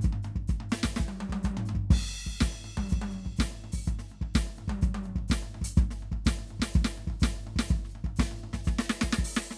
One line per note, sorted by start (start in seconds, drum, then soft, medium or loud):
0.01 kick loud
0.01 hi-hat pedal medium
0.12 floor tom medium
0.23 floor tom medium
0.23 hi-hat pedal soft
0.36 kick medium
0.47 kick medium
0.47 snare soft
0.47 hi-hat pedal medium
0.60 floor tom medium
0.69 snare loud
0.69 hi-hat pedal soft
0.83 kick medium
0.83 snare loud
0.95 snare loud
0.95 hi-hat pedal medium
1.00 kick medium
1.08 high tom loud
1.17 hi-hat pedal soft
1.17 high tom loud
1.29 kick medium
1.29 high tom loud
1.43 kick medium
1.43 hi-hat pedal medium
1.43 high tom loud
1.57 floor tom loud
1.65 floor tom loud
1.65 hi-hat pedal medium
1.75 kick medium
1.90 kick loud
1.90 hi-hat pedal medium
1.90 crash loud
2.12 hi-hat pedal soft
2.26 kick medium
2.26 floor tom soft
2.40 kick medium
2.40 snare loud
2.40 hi-hat pedal medium
2.52 floor tom medium
2.62 floor tom medium
2.62 hi-hat pedal soft
2.77 kick medium
2.77 high tom loud
2.89 kick medium
2.89 floor tom medium
2.89 hi-hat pedal medium
3.02 high tom loud
3.10 floor tom medium
3.10 hi-hat pedal soft
3.25 kick medium
3.25 floor tom medium
3.37 kick medium
3.37 snare loud
3.37 hi-hat pedal medium
3.51 floor tom medium
3.59 hi-hat pedal soft
3.64 floor tom medium
3.72 open hi-hat loud
3.72 kick medium
3.86 kick medium
3.86 floor tom medium
3.86 hi-hat pedal medium
3.99 snare soft
4.08 floor tom soft
4.08 hi-hat pedal soft
4.21 kick medium
4.21 floor tom medium
4.34 kick medium
4.34 snare loud
4.34 hi-hat pedal medium
4.46 floor tom soft
4.55 floor tom medium
4.55 hi-hat pedal soft
4.68 kick medium
4.68 high tom loud
4.81 kick loud
4.81 floor tom medium
4.81 hi-hat pedal medium
4.94 high tom loud
5.03 floor tom medium
5.03 hi-hat pedal soft
5.16 kick medium
5.16 floor tom medium
5.28 kick medium
5.28 snare loud
5.28 hi-hat pedal medium
5.42 floor tom medium
5.50 hi-hat pedal soft
5.54 floor tom medium
5.61 open hi-hat loud
5.61 kick medium
5.76 kick loud
5.76 floor tom medium
5.76 hi-hat pedal medium
5.91 snare medium
5.99 floor tom medium
5.99 hi-hat pedal soft
6.12 kick medium
6.12 floor tom medium
6.25 kick medium
6.25 snare loud
6.25 hi-hat pedal medium
6.39 floor tom medium
6.47 floor tom medium
6.47 hi-hat pedal soft
6.60 kick medium
6.60 snare loud
6.73 kick loud
6.73 floor tom medium
6.73 hi-hat pedal medium
6.84 snare loud
6.94 floor tom medium
6.94 hi-hat pedal soft
7.07 kick medium
7.07 floor tom medium
7.20 kick loud
7.20 snare loud
7.20 hi-hat pedal medium
7.35 floor tom medium
7.41 hi-hat pedal soft
7.47 floor tom medium
7.56 kick medium
7.56 snare loud
7.67 kick loud
7.67 hi-hat pedal medium
7.72 floor tom medium
7.84 snare soft
7.89 hi-hat pedal soft
7.95 floor tom medium
8.04 kick medium
8.04 floor tom medium
8.16 kick medium
8.16 snare loud
8.16 hi-hat pedal medium
8.31 floor tom medium
8.37 hi-hat pedal soft
8.43 floor tom medium
8.53 kick medium
8.53 snare medium
8.64 kick medium
8.64 snare medium
8.64 hi-hat pedal medium
8.79 snare loud
8.86 snare loud
8.86 hi-hat pedal soft
9.01 kick medium
9.01 snare loud
9.10 snare loud
9.10 hi-hat pedal medium
9.19 kick medium
9.24 open hi-hat loud
9.36 snare loud
9.51 snare medium